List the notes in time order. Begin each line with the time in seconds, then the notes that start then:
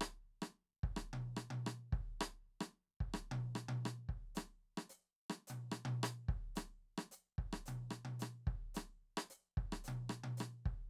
0.01 cross-stick
0.42 cross-stick
0.84 kick
0.97 cross-stick
1.13 high tom
1.37 cross-stick
1.50 high tom
1.67 cross-stick
1.93 kick
2.21 cross-stick
2.61 cross-stick
3.01 kick
3.14 cross-stick
3.31 high tom
3.55 cross-stick
3.69 high tom
3.85 cross-stick
4.09 kick
4.35 cross-stick, hi-hat pedal
4.77 cross-stick
4.90 hi-hat pedal
5.30 cross-stick
5.47 hi-hat pedal, high tom
5.72 cross-stick
5.85 high tom
6.03 cross-stick, hi-hat pedal
6.29 kick
6.56 cross-stick, hi-hat pedal
6.98 cross-stick
7.11 hi-hat pedal
7.38 kick
7.53 cross-stick
7.66 hi-hat pedal, high tom
7.91 cross-stick
8.05 high tom
8.20 cross-stick, hi-hat pedal
8.47 kick
8.75 cross-stick, hi-hat pedal
9.17 cross-stick
9.30 hi-hat pedal
9.57 kick
9.72 cross-stick
9.84 hi-hat pedal, high tom
10.10 cross-stick
10.24 high tom
10.37 cross-stick, hi-hat pedal
10.66 kick